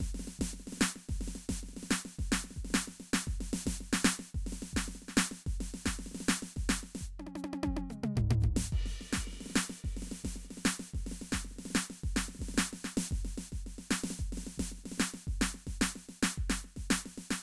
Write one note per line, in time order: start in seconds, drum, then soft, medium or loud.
0.01 kick soft
0.01 snare soft
0.07 kick soft
0.15 snare soft
0.20 snare soft
0.26 snare soft
0.26 hi-hat pedal soft
0.28 snare soft
0.40 kick soft
0.40 snare medium
0.45 kick soft
0.54 snare soft
0.60 snare soft
0.67 snare soft
0.73 snare soft
0.78 snare soft
0.78 hi-hat pedal medium
0.82 snare loud
0.96 snare soft
1.09 kick soft
1.09 snare soft
1.17 kick soft
1.22 snare soft
1.28 snare soft
1.34 snare soft
1.34 hi-hat pedal soft
1.50 kick soft
1.50 snare medium
1.64 snare soft
1.69 snare soft
1.74 snare soft
1.77 snare soft
1.84 snare soft
1.90 snare loud
1.90 hi-hat pedal medium
2.06 snare soft
2.19 kick soft
2.19 snare soft
2.33 snare loud
2.42 snare soft
2.42 hi-hat pedal soft
2.51 snare soft
2.57 kick soft
2.57 snare soft
2.65 snare soft
2.71 snare soft
2.75 snare loud
2.88 snare soft
3.00 snare soft
3.00 hi-hat pedal soft
3.14 snare loud
3.28 kick soft
3.28 snare soft
3.34 kick soft
3.41 snare soft
3.52 snare medium
3.52 hi-hat pedal soft
3.67 kick soft
3.67 snare medium
3.72 kick soft
3.81 snare soft
3.94 snare loud
4.05 snare loud
4.05 hi-hat pedal soft
4.20 snare soft
4.35 kick soft
4.35 snare soft
4.41 kick soft
4.47 snare soft
4.53 snare soft
4.60 snare soft
4.60 hi-hat pedal soft
4.74 kick soft
4.74 snare medium
4.89 snare soft
4.96 snare soft
5.02 snare soft
5.09 snare soft
5.17 snare loud
5.17 hi-hat pedal soft
5.32 snare soft
5.47 kick soft
5.47 snare soft
5.54 kick soft
5.61 snare medium
5.70 hi-hat pedal soft
5.75 snare soft
5.86 kick soft
5.86 snare medium
6.00 snare soft
6.07 snare soft
6.12 snare soft
6.15 snare soft
6.21 snare soft
6.28 snare loud
6.28 hi-hat pedal soft
6.43 snare soft
6.57 kick soft
6.57 snare soft
6.64 kick soft
6.70 snare loud
6.82 snare soft
6.82 hi-hat pedal soft
6.96 snare medium
7.02 kick soft
7.20 high tom medium
7.27 high tom medium
7.36 hi-hat pedal medium
7.36 high tom medium
7.45 high tom medium
7.54 high tom medium
7.67 kick soft
7.73 kick soft
7.77 high tom loud
7.91 hi-hat pedal medium
7.91 mid tom medium
8.04 mid tom loud
8.16 kick soft
8.16 floor tom loud
8.31 floor tom loud
8.41 kick soft
8.41 hi-hat pedal soft
8.41 floor tom medium
8.50 kick soft
8.57 snare medium
8.73 kick medium
8.73 ride medium
8.86 kick soft
8.86 snare soft
8.97 hi-hat pedal soft
9.02 snare soft
9.13 kick soft
9.13 snare medium
9.28 snare soft
9.34 snare soft
9.41 snare soft
9.47 snare soft
9.51 snare soft
9.51 hi-hat pedal medium
9.56 snare loud
9.70 snare soft
9.85 kick soft
9.85 snare soft
9.97 snare soft
10.03 snare soft
10.08 snare soft
10.08 hi-hat pedal soft
10.12 snare soft
10.25 kick soft
10.25 snare medium
10.36 snare soft
10.45 snare soft
10.51 snare soft
10.58 snare soft
10.64 snare loud
10.64 hi-hat pedal soft
10.80 snare soft
10.94 kick soft
10.94 snare soft
11.00 kick soft
11.07 snare soft
11.12 snare soft
11.17 hi-hat pedal soft
11.22 snare soft
11.33 kick soft
11.33 snare medium
11.45 snare soft
11.52 snare soft
11.57 snare soft
11.59 snare soft
11.66 snare soft
11.71 snare soft
11.71 hi-hat pedal medium
11.76 snare loud
11.91 snare soft
12.04 kick soft
12.04 snare soft
12.10 kick soft
12.17 snare medium
12.25 hi-hat pedal soft
12.29 snare soft
12.36 snare soft
12.40 kick soft
12.40 snare soft
12.49 snare soft
12.55 snare soft
12.58 snare loud
12.74 snare soft
12.82 snare medium
12.82 hi-hat pedal soft
12.98 snare medium
13.12 kick soft
13.12 snare soft
13.19 kick soft
13.25 snare soft
13.36 snare medium
13.36 hi-hat pedal soft
13.53 kick soft
13.53 snare soft
13.67 snare soft
13.79 snare soft
13.91 snare loud
13.91 hi-hat pedal soft
14.04 snare medium
14.11 snare soft
14.20 kick soft
14.20 snare soft
14.26 kick soft
14.33 snare soft
14.38 snare soft
14.44 snare soft
14.44 hi-hat pedal soft
14.47 snare soft
14.59 kick soft
14.59 snare medium
14.72 snare soft
14.79 snare soft
14.85 snare soft
14.86 snare soft
14.92 snare soft
14.98 snare soft
14.98 hi-hat pedal soft
15.00 snare loud
15.14 snare soft
15.28 kick soft
15.28 snare soft
15.34 kick soft
15.42 snare loud
15.50 hi-hat pedal soft
15.55 snare soft
15.67 kick soft
15.67 snare soft
15.82 snare loud
15.96 snare soft
16.09 snare soft
16.09 hi-hat pedal soft
16.23 snare loud
16.38 kick soft
16.38 snare soft
16.45 kick soft
16.50 snare medium
16.61 hi-hat pedal medium
16.65 snare soft
16.77 kick soft
16.77 snare soft
16.91 snare loud
17.06 snare soft
17.17 snare soft
17.17 hi-hat pedal soft
17.31 snare medium